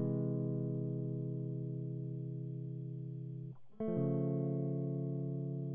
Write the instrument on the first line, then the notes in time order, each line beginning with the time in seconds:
electric guitar
0.00 C3 E3 G#3
3.81 A3
3.89 F3
3.98 C#3